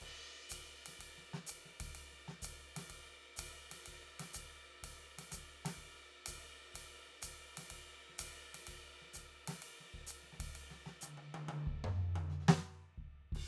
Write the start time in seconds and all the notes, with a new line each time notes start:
0.01 kick, hi-hat pedal, ride
0.50 kick, hi-hat pedal, ride
0.87 snare, ride
1.00 kick, ride
1.18 snare
1.34 snare
1.47 hi-hat pedal, ride
1.51 kick
1.66 snare
1.81 kick, ride
1.94 hi-hat pedal, ride
2.13 snare
2.29 snare
2.43 kick, hi-hat pedal, ride
2.77 snare, ride
2.91 kick, ride
3.37 kick, hi-hat pedal, ride
3.72 snare, ride
3.86 kick, hi-hat pedal, ride
4.20 snare, ride
4.34 kick, hi-hat pedal, ride
4.84 kick, ride
5.19 snare, ride
5.32 kick, snare, hi-hat pedal, ride
5.66 snare, ride
5.78 kick
6.27 kick, hi-hat pedal, ride
6.75 kick, hi-hat pedal, ride
7.08 snare
7.23 kick, hi-hat pedal, ride
7.58 snare, ride
7.71 kick, ride
8.10 snare
8.19 kick, hi-hat pedal, ride
8.54 snare, ride
8.68 kick, ride
9.02 snare
9.14 kick, snare, hi-hat pedal, ride
9.48 snare, ride
9.63 ride
9.81 snare
9.95 kick
10.07 hi-hat pedal, ride
10.23 snare
10.33 snare
10.40 kick, ride
10.51 hi-hat pedal
10.56 ride
10.71 snare
10.87 snare
11.02 hi-hat pedal, high tom
11.18 high tom
11.35 high tom
11.49 high tom
11.68 kick
11.85 floor tom
12.16 high tom
12.31 snare
12.41 snare
12.44 snare
12.49 snare
12.98 kick
13.33 kick, crash